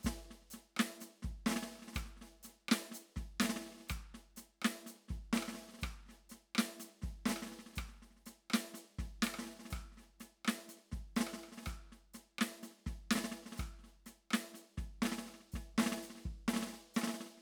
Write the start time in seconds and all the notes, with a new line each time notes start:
0.01 snare, hi-hat pedal
0.06 kick, snare
0.13 kick
0.19 snare
0.25 snare
0.31 snare
0.42 snare
0.51 snare, hi-hat pedal
0.77 cross-stick, snare
0.92 snare
1.01 hi-hat pedal
1.10 snare
1.17 snare
1.23 kick, snare
1.31 kick
1.47 snare, hi-hat pedal
1.50 snare
1.52 snare
1.57 snare
1.63 snare
1.67 snare
1.72 snare
1.76 cross-stick, snare
1.83 snare
1.89 snare
1.94 kick, cross-stick, snare, hi-hat pedal
2.07 snare
2.17 snare
2.22 snare
2.28 snare
2.33 snare
2.38 snare
2.41 snare, hi-hat pedal
2.45 snare
2.69 cross-stick, snare
2.92 snare, hi-hat pedal
3.01 snare
3.08 snare
3.17 kick, snare
3.41 snare, hi-hat pedal
3.43 snare
3.45 snare
3.50 snare
3.57 snare
3.62 snare
3.67 snare
3.73 snare
3.75 snare
3.78 snare
3.81 snare
3.88 kick, cross-stick, snare, hi-hat pedal
4.15 snare
4.37 snare, hi-hat pedal
4.63 cross-stick, snare
4.87 snare, hi-hat pedal
4.90 snare
4.96 snare
5.02 snare
5.07 snare
5.09 kick, snare
5.17 kick
5.34 snare, hi-hat pedal
5.37 cross-stick, snare
5.43 cross-stick
5.49 snare
5.53 snare
5.55 snare
5.58 snare
5.63 snare
5.68 snare
5.69 snare
5.75 snare
5.79 snare, hi-hat pedal
5.84 kick, cross-stick
6.00 snare
6.07 snare
6.10 snare
6.30 snare, hi-hat pedal
6.56 cross-stick, snare
6.80 snare, hi-hat pedal
6.84 snare
6.89 snare
6.97 snare
7.03 kick, snare
7.27 snare, hi-hat pedal
7.29 snare
7.31 snare
7.37 cross-stick
7.43 snare
7.47 snare
7.53 snare
7.60 snare
7.67 snare
7.71 snare
7.74 snare, hi-hat pedal
7.78 kick, cross-stick
7.90 snare
7.97 snare
8.03 snare
8.11 snare
8.17 snare
8.27 snare, hi-hat pedal
8.51 cross-stick, snare
8.75 snare, hi-hat pedal
8.86 snare
8.90 snare
8.99 kick, snare
9.08 kick
9.23 snare, hi-hat pedal
9.28 cross-stick
9.35 cross-stick
9.40 snare
9.43 snare
9.47 snare
9.52 snare
9.57 snare
9.60 snare
9.66 snare
9.71 kick, cross-stick, snare, hi-hat pedal
9.77 kick, cross-stick
9.86 snare
9.93 snare
9.97 snare
10.04 snare
10.21 snare, hi-hat pedal
10.46 cross-stick, snare
10.59 snare
10.69 snare, hi-hat pedal
10.78 snare
10.86 snare
10.93 kick, snare
10.99 kick
11.17 snare, hi-hat pedal
11.21 snare
11.28 cross-stick
11.34 snare
11.38 snare
11.44 cross-stick
11.49 snare
11.53 snare
11.58 snare
11.63 cross-stick, snare, hi-hat pedal
11.68 kick
11.81 snare
11.93 snare
12.15 snare, hi-hat pedal
12.39 cross-stick, snare
12.64 snare, hi-hat pedal
12.72 snare
12.79 snare
12.87 kick, snare
13.12 snare, hi-hat pedal
13.16 snare
13.19 snare
13.25 snare
13.32 snare
13.38 cross-stick
13.44 snare
13.47 snare
13.53 snare
13.57 kick, cross-stick, snare, hi-hat pedal
13.80 snare
13.84 snare
14.07 snare, hi-hat pedal
14.32 cross-stick, snare
14.55 snare, hi-hat pedal
14.62 snare
14.78 kick, snare
15.03 snare, hi-hat pedal
15.06 cross-stick, snare
15.13 snare
15.19 snare
15.24 snare
15.27 cross-stick, snare
15.35 snare
15.41 snare
15.53 kick, snare, hi-hat pedal
15.79 snare
15.81 snare
15.83 snare
15.87 snare
15.90 snare
15.93 snare
15.98 snare
16.04 snare, hi-hat pedal
16.11 snare
16.16 snare
16.18 snare
16.22 kick, snare
16.27 snare
16.49 snare, hi-hat pedal
16.54 snare
16.57 snare
16.61 snare
16.63 snare
16.68 snare
16.70 snare
16.74 snare
16.95 snare, hi-hat pedal
17.02 cross-stick, snare
17.08 snare
17.10 snare
17.15 snare
17.21 snare
17.27 snare
17.32 snare
17.38 snare